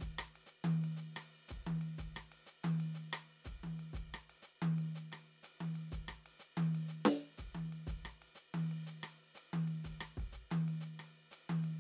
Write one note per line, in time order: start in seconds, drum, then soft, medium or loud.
0.01 kick soft
0.01 hi-hat pedal medium
0.01 ride medium
0.19 cross-stick medium
0.36 ride medium
0.47 hi-hat pedal medium
0.65 high tom loud
0.65 ride medium
0.85 ride medium
0.97 hi-hat pedal medium
1.17 cross-stick medium
1.17 ride medium
1.49 kick soft
1.49 hi-hat pedal medium
1.49 ride medium
1.67 high tom medium
1.82 ride medium
1.99 kick soft
1.99 hi-hat pedal medium
1.99 ride medium
2.17 cross-stick medium
2.33 ride medium
2.47 hi-hat pedal medium
2.64 high tom medium
2.64 ride medium
2.69 hi-hat pedal soft
2.81 ride medium
2.95 hi-hat pedal medium
3.14 cross-stick medium
3.14 ride medium
3.45 kick soft
3.45 hi-hat pedal medium
3.45 ride medium
3.64 high tom medium
3.80 ride soft
3.94 kick soft
3.94 hi-hat pedal medium
3.94 ride soft
4.15 cross-stick medium
4.30 ride medium
4.43 hi-hat pedal medium
4.62 high tom medium
4.62 ride medium
4.79 ride soft
4.96 hi-hat pedal medium
5.13 cross-stick medium
5.13 ride medium
5.18 hi-hat pedal soft
5.44 hi-hat pedal medium
5.44 ride medium
5.61 high tom medium
5.65 hi-hat pedal soft
5.76 ride soft
5.93 kick soft
5.93 hi-hat pedal medium
5.93 ride soft
6.09 cross-stick medium
6.27 ride medium
6.40 hi-hat pedal medium
6.58 high tom loud
6.58 ride medium
6.62 hi-hat pedal soft
6.75 ride medium
6.89 hi-hat pedal medium
7.06 snare medium
7.06 ride medium
7.38 kick soft
7.38 hi-hat pedal medium
7.38 ride medium
7.55 high tom medium
7.73 ride soft
7.88 kick soft
7.88 hi-hat pedal medium
7.88 ride medium
8.06 cross-stick medium
8.06 hi-hat pedal soft
8.23 ride medium
8.36 hi-hat pedal medium
8.55 high tom medium
8.55 ride medium
8.72 ride soft
8.87 hi-hat pedal medium
9.04 cross-stick medium
9.04 ride medium
9.36 hi-hat pedal medium
9.36 ride medium
9.54 hi-hat pedal soft
9.54 high tom medium
9.68 ride soft
9.85 kick soft
9.85 hi-hat pedal medium
9.85 ride medium
10.01 cross-stick medium
10.18 kick soft
10.18 ride soft
10.33 hi-hat pedal medium
10.52 high tom medium
10.52 ride medium
10.69 ride medium
10.82 hi-hat pedal medium
11.00 cross-stick soft
11.00 hi-hat pedal soft
11.00 ride medium
11.32 hi-hat pedal medium
11.32 ride medium
11.50 hi-hat pedal soft
11.50 high tom medium
11.65 ride soft